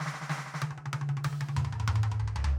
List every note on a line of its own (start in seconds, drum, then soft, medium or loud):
0.00 snare medium
0.06 snare medium
0.14 snare medium
0.21 snare medium
0.29 snare medium
0.38 snare medium
0.46 snare medium
0.54 snare medium
0.62 high tom loud
0.71 high tom medium
0.78 high tom medium
0.85 high tom medium
0.93 high tom loud
1.01 high tom medium
1.09 high tom medium
1.17 high tom medium
1.24 kick soft
1.24 crash medium
1.24 high tom loud
1.33 high tom medium
1.41 high tom medium
1.49 high tom loud
1.56 mid tom loud
1.65 mid tom medium
1.72 mid tom medium
1.80 mid tom loud
1.88 kick soft
1.88 mid tom loud
1.96 mid tom loud
2.03 mid tom medium
2.12 mid tom loud
2.19 floor tom medium
2.28 floor tom medium
2.36 floor tom loud
2.44 floor tom loud